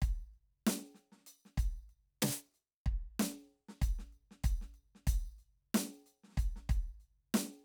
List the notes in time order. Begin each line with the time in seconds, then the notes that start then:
0.01 closed hi-hat, kick
0.34 closed hi-hat
0.66 closed hi-hat, snare
0.94 closed hi-hat, snare
1.12 snare
1.16 snare
1.19 snare
1.26 closed hi-hat
1.45 snare
1.57 closed hi-hat, kick
1.89 closed hi-hat
2.22 closed hi-hat, snare
2.54 closed hi-hat
2.86 kick
3.19 closed hi-hat, snare
3.68 snare
3.81 closed hi-hat, kick
3.99 snare
4.12 closed hi-hat
4.31 snare
4.43 closed hi-hat, kick
4.61 snare
4.74 closed hi-hat
4.95 snare
5.07 closed hi-hat, kick
5.38 closed hi-hat
5.74 closed hi-hat, snare
6.06 closed hi-hat
6.23 snare
6.28 snare
6.31 snare
6.33 snare
6.37 closed hi-hat, kick
6.56 snare
6.69 closed hi-hat, kick
7.00 closed hi-hat
7.34 closed hi-hat, snare